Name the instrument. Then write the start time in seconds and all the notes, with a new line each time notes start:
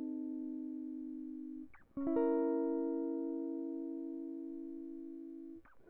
electric guitar
1.97 C#4
2.07 E4
2.16 A#4